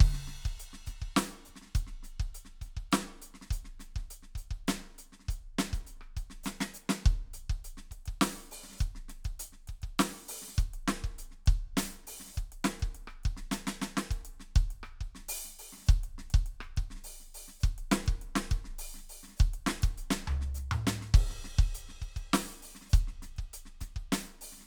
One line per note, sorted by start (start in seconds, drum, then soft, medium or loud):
0.01 kick loud
0.01 crash medium
0.14 snare soft
0.28 snare soft
0.45 closed hi-hat soft
0.45 kick medium
0.60 closed hi-hat medium
0.74 snare soft
0.87 closed hi-hat soft
0.87 kick soft
0.87 snare soft
1.01 kick medium
1.01 closed hi-hat soft
1.17 open hi-hat medium
1.17 snare loud
1.46 open hi-hat soft
1.46 hi-hat pedal soft
1.50 kick soft
1.56 snare soft
1.62 snare soft
1.66 snare soft
1.76 closed hi-hat medium
1.76 kick medium
1.87 snare soft
2.03 closed hi-hat soft
2.03 snare soft
2.20 kick medium
2.20 closed hi-hat soft
2.35 closed hi-hat medium
2.46 snare soft
2.62 closed hi-hat soft
2.62 kick soft
2.62 snare soft
2.77 kick medium
2.93 closed hi-hat medium
2.93 snare loud
3.01 snare soft
3.10 snare soft
3.14 snare soft
3.22 closed hi-hat medium
3.35 snare soft
3.42 snare soft
3.46 snare soft
3.51 closed hi-hat medium
3.51 kick medium
3.65 snare soft
3.80 closed hi-hat soft
3.80 snare soft
3.95 kick medium
3.95 snare soft
3.95 closed hi-hat soft
4.02 snare soft
4.11 closed hi-hat medium
4.23 snare soft
4.36 closed hi-hat soft
4.36 kick soft
4.51 kick medium
4.51 closed hi-hat soft
4.68 closed hi-hat medium
4.68 snare loud
4.82 snare soft
4.99 closed hi-hat medium
5.13 snare soft
5.20 snare soft
5.24 snare soft
5.29 closed hi-hat medium
5.29 kick medium
5.59 snare loud
5.73 closed hi-hat soft
5.73 kick medium
5.73 snare soft
5.87 closed hi-hat soft
6.02 cross-stick soft
6.17 closed hi-hat soft
6.17 kick medium
6.31 snare soft
6.44 snare medium
6.44 hi-hat pedal medium
6.61 snare loud
6.75 hi-hat pedal medium
6.90 snare loud
7.06 kick loud
7.34 closed hi-hat medium
7.50 kick medium
7.50 snare soft
7.65 closed hi-hat medium
7.78 snare soft
7.92 kick soft
7.92 closed hi-hat soft
8.06 kick medium
8.06 closed hi-hat soft
8.22 open hi-hat medium
8.22 snare loud
8.52 open hi-hat medium
8.64 snare soft
8.69 snare soft
8.72 snare soft
8.75 snare soft
8.79 kick medium
8.79 closed hi-hat soft
8.79 hi-hat pedal soft
8.96 snare soft
9.09 snare soft
9.09 closed hi-hat soft
9.25 kick medium
9.25 closed hi-hat soft
9.40 closed hi-hat loud
9.53 snare soft
9.68 kick soft
9.68 closed hi-hat soft
9.83 kick soft
9.83 closed hi-hat soft
10.00 open hi-hat medium
10.00 snare loud
10.29 open hi-hat medium
10.42 snare soft
10.49 snare soft
10.52 snare soft
10.57 kick medium
10.57 snare soft
10.57 closed hi-hat soft
10.57 hi-hat pedal soft
10.74 closed hi-hat soft
10.88 snare loud
11.05 kick medium
11.05 closed hi-hat soft
11.19 closed hi-hat medium
11.32 snare soft
11.47 kick loud
11.47 closed hi-hat soft
11.78 open hi-hat loud
11.78 snare loud
11.86 snare soft
12.08 open hi-hat medium
12.20 snare soft
12.25 snare soft
12.28 snare soft
12.35 kick medium
12.35 hi-hat pedal soft
12.39 closed hi-hat soft
12.53 closed hi-hat soft
12.65 snare loud
12.81 kick medium
12.81 closed hi-hat soft
12.95 closed hi-hat soft
13.08 cross-stick medium
13.24 kick medium
13.24 closed hi-hat soft
13.37 snare soft
13.52 snare loud
13.52 hi-hat pedal medium
13.68 snare loud
13.82 snare loud
13.98 snare medium
14.11 kick medium
14.11 closed hi-hat soft
14.26 closed hi-hat medium
14.40 snare soft
14.56 kick loud
14.56 closed hi-hat soft
14.71 closed hi-hat soft
14.84 cross-stick medium
15.01 kick medium
15.16 snare soft
15.18 snare soft
15.29 open hi-hat loud
15.45 snare soft
15.49 snare soft
15.53 snare soft
15.59 open hi-hat medium
15.73 snare soft
15.78 snare soft
15.82 snare soft
15.85 snare soft
15.85 hi-hat pedal medium
15.89 kick loud
15.89 closed hi-hat soft
16.04 closed hi-hat soft
16.19 snare soft
16.31 kick loud
16.31 closed hi-hat soft
16.47 closed hi-hat soft
16.61 cross-stick medium
16.77 kick medium
16.77 closed hi-hat soft
16.91 snare soft
16.94 snare soft
16.97 snare soft
17.05 open hi-hat medium
17.21 snare soft
17.27 snare soft
17.35 open hi-hat medium
17.49 snare soft
17.61 kick loud
17.61 hi-hat pedal soft
17.65 closed hi-hat soft
17.79 closed hi-hat soft
17.92 snare loud
18.07 kick medium
18.07 closed hi-hat soft
18.22 closed hi-hat soft
18.36 snare loud
18.44 snare soft
18.52 kick medium
18.52 closed hi-hat soft
18.65 snare soft
18.70 snare soft
18.76 open hi-hat medium
18.76 snare soft
18.95 snare soft
18.98 snare soft
19.10 open hi-hat medium
19.24 snare soft
19.28 snare soft
19.32 snare soft
19.35 snare soft
19.35 hi-hat pedal soft
19.40 kick loud
19.40 snare soft
19.40 closed hi-hat soft
19.54 closed hi-hat soft
19.67 snare loud
19.69 snare medium
19.83 kick loud
19.83 closed hi-hat medium
19.98 closed hi-hat medium
20.11 snare loud
20.28 floor tom loud
20.42 snare soft
20.55 snare soft
20.55 hi-hat pedal medium
20.72 mid tom loud
20.88 snare loud
21.02 snare soft
21.05 snare soft
21.15 kick loud
21.15 crash medium
21.30 snare soft
21.45 snare soft
21.59 kick loud
21.75 closed hi-hat medium
21.89 snare soft
22.02 kick soft
22.02 closed hi-hat soft
22.17 kick medium
22.17 closed hi-hat soft
22.34 open hi-hat loud
22.34 snare loud
22.63 open hi-hat medium
22.76 snare soft
22.82 snare soft
22.86 snare soft
22.90 kick loud
22.90 hi-hat pedal medium
22.94 closed hi-hat medium
23.08 snare soft
23.23 closed hi-hat soft
23.23 snare soft
23.37 kick medium
23.37 closed hi-hat soft
23.54 closed hi-hat medium
23.66 snare soft
23.81 closed hi-hat soft
23.81 kick soft
23.81 snare soft
23.97 kick medium
23.97 closed hi-hat soft
24.13 open hi-hat medium
24.13 snare loud
24.42 open hi-hat medium
24.53 snare soft
24.58 snare soft
24.61 snare soft
24.63 snare soft